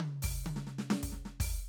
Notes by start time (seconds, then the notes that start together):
0.00 high tom
0.22 open hi-hat, kick
0.44 hi-hat pedal, high tom
0.56 snare
0.67 snare
0.78 snare
0.90 snare
1.03 kick, open hi-hat
1.09 snare, hi-hat pedal
1.18 kick
1.25 snare
1.40 open hi-hat, kick